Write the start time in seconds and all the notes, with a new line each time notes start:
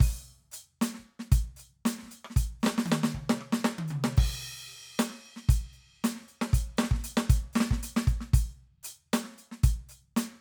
0.01 open hi-hat, kick
0.52 closed hi-hat, hi-hat pedal
0.82 closed hi-hat, snare
0.95 snare
0.98 kick, snare
1.20 snare
1.32 closed hi-hat, kick
1.57 closed hi-hat, hi-hat pedal
1.86 closed hi-hat, snare
1.99 snare
2.03 kick, snare
2.06 snare
2.08 snare
2.10 closed hi-hat, snare
2.25 cross-stick
2.31 snare
2.37 closed hi-hat, kick
2.61 snare, hi-hat pedal
2.67 snare
2.78 snare
2.86 hi-hat pedal, high tom
2.92 snare
3.04 snare
3.15 kick, mid tom
3.30 snare
3.41 cross-stick
3.53 snare
3.65 snare
3.79 high tom
3.88 hi-hat pedal, mid tom
4.04 snare
4.17 kick, crash
5.00 closed hi-hat, snare
5.11 snare
5.14 snare
5.26 closed hi-hat
5.37 snare
5.49 closed hi-hat, kick
5.73 hi-hat pedal
6.05 closed hi-hat, snare
6.16 snare
6.19 snare
6.21 snare
6.23 snare
6.29 closed hi-hat
6.42 snare
6.50 kick, snare
6.55 closed hi-hat
6.78 snare, hi-hat pedal
6.84 snare
6.92 kick, snare
6.99 snare
7.03 closed hi-hat, snare
7.18 snare
7.30 closed hi-hat, kick
7.37 snare
7.53 snare, hi-hat pedal
7.61 snare
7.71 kick, snare
7.77 snare
7.83 closed hi-hat, snare
7.97 snare
8.08 closed hi-hat, kick
8.21 snare
8.34 open hi-hat, kick
8.84 closed hi-hat, hi-hat pedal
9.14 closed hi-hat, snare
9.25 snare
9.28 snare
9.32 snare
9.35 closed hi-hat, snare
9.52 snare
9.64 closed hi-hat, kick
9.89 closed hi-hat, hi-hat pedal
10.17 closed hi-hat, snare
10.34 snare